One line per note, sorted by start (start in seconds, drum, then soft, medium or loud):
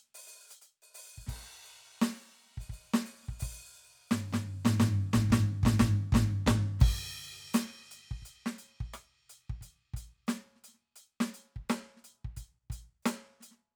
0.15 open hi-hat medium
0.28 open hi-hat medium
0.50 closed hi-hat medium
0.50 hi-hat pedal soft
0.62 closed hi-hat soft
0.83 open hi-hat medium
0.95 open hi-hat medium
1.18 kick soft
1.27 kick soft
1.27 snare soft
1.27 crash medium
1.36 snare soft
1.42 snare soft
1.65 open hi-hat medium
2.02 open hi-hat medium
2.02 snare loud
2.51 snare soft
2.58 open hi-hat medium
2.58 kick soft
2.70 open hi-hat medium
2.70 kick soft
2.94 snare loud
3.05 open hi-hat medium
3.24 snare soft
3.29 kick soft
3.29 snare soft
3.40 open hi-hat loud
3.40 kick medium
4.12 snare loud
4.12 floor tom medium
4.33 snare loud
4.33 floor tom medium
4.66 snare loud
4.66 floor tom loud
4.80 snare loud
4.80 floor tom loud
5.14 kick soft
5.14 snare loud
5.14 floor tom loud
5.31 kick medium
5.31 snare loud
5.31 floor tom loud
5.64 kick medium
5.64 snare loud
5.64 floor tom loud
5.80 kick medium
5.80 snare loud
5.80 floor tom loud
6.13 kick medium
6.13 snare loud
6.13 floor tom loud
6.47 kick medium
6.47 snare loud
6.47 floor tom loud
6.80 kick loud
6.80 snare soft
6.80 crash loud
7.54 open hi-hat loud
7.54 snare loud
7.54 hi-hat pedal soft
7.90 closed hi-hat medium
7.90 cross-stick soft
8.12 kick soft
8.23 closed hi-hat medium
8.23 kick soft
8.47 snare medium
8.59 closed hi-hat medium
8.81 kick soft
8.94 closed hi-hat medium
8.94 cross-stick medium
9.30 closed hi-hat medium
9.50 kick soft
9.62 closed hi-hat medium
9.62 kick soft
9.94 closed hi-hat medium
9.94 kick soft
10.28 closed hi-hat medium
10.28 snare loud
10.28 hi-hat pedal soft
10.56 snare soft
10.65 closed hi-hat medium
10.69 snare soft
10.74 snare soft
10.96 closed hi-hat medium
11.21 snare loud
11.35 closed hi-hat medium
11.57 kick soft
11.70 closed hi-hat medium
11.70 snare loud
11.97 snare soft
12.05 closed hi-hat medium
12.25 kick soft
12.37 closed hi-hat medium
12.37 kick soft
12.71 closed hi-hat medium
12.71 kick soft
13.03 closed hi-hat medium
13.03 snare loud
13.03 hi-hat pedal soft
13.41 closed hi-hat medium
13.41 snare soft
13.52 snare soft